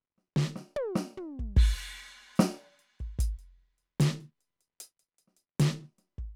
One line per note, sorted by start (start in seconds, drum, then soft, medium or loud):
0.18 snare soft
0.36 snare loud
0.56 snare soft
0.76 high tom loud
0.96 snare medium
1.17 floor tom medium
1.39 kick soft
1.56 kick medium
1.56 crash loud
2.36 snare loud
2.36 hi-hat pedal medium
2.41 closed hi-hat medium
2.60 closed hi-hat soft
2.79 closed hi-hat soft
2.99 kick soft
2.99 closed hi-hat soft
3.19 closed hi-hat loud
3.19 kick medium
3.39 closed hi-hat soft
3.78 closed hi-hat soft
4.00 closed hi-hat loud
4.00 snare loud
4.20 closed hi-hat soft
4.41 closed hi-hat soft
4.61 closed hi-hat soft
4.80 closed hi-hat loud
4.99 closed hi-hat soft
5.18 closed hi-hat soft
5.28 snare soft
5.37 closed hi-hat soft
5.60 closed hi-hat loud
5.60 snare loud
5.83 snare soft
5.98 snare soft
5.98 closed hi-hat soft
6.18 kick soft
6.18 closed hi-hat soft